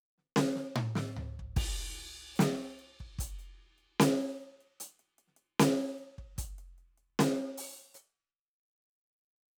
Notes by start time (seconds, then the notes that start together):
0.18 snare
0.36 snare
0.56 snare
0.76 high tom
0.95 snare
1.17 floor tom
1.39 kick
1.56 kick, crash
2.35 snare, hi-hat pedal
2.40 closed hi-hat
2.59 closed hi-hat
2.79 closed hi-hat
2.99 kick, closed hi-hat
3.19 closed hi-hat, kick
3.39 closed hi-hat
3.78 closed hi-hat
4.00 closed hi-hat, snare
4.20 closed hi-hat
4.40 closed hi-hat
4.61 closed hi-hat
4.80 closed hi-hat
4.99 closed hi-hat
5.18 closed hi-hat
5.27 snare
5.36 closed hi-hat
5.60 closed hi-hat, snare
5.82 snare
5.98 snare, closed hi-hat
6.18 kick, closed hi-hat
6.36 closed hi-hat, kick, snare
6.58 closed hi-hat
6.78 closed hi-hat
6.98 closed hi-hat
7.19 closed hi-hat, snare
7.38 closed hi-hat
7.58 open hi-hat
7.94 hi-hat pedal